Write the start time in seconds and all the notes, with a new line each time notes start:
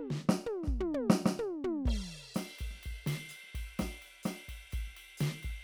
0.10 snare
0.29 snare
0.46 mid tom
0.64 kick, snare
0.80 floor tom
0.94 high tom
1.10 snare
1.26 snare
1.39 mid tom
1.64 floor tom
1.86 kick, crash
1.92 kick
2.35 snare, hi-hat pedal, ride
2.59 kick, ride
2.66 kick
2.71 snare
2.75 snare
2.79 snare, hi-hat pedal
2.83 kick, ride
2.91 kick
3.06 snare, ride
3.29 hi-hat pedal, ride
3.44 snare
3.55 kick, ride
3.60 kick
3.79 kick, snare, hi-hat pedal, ride
3.86 kick
4.02 ride
4.23 snare, hi-hat pedal, ride
4.49 kick, ride
4.71 kick, hi-hat pedal, ride
4.79 kick
4.87 snare
4.97 ride
5.17 snare, hi-hat pedal, ride
5.43 kick, ride
5.50 kick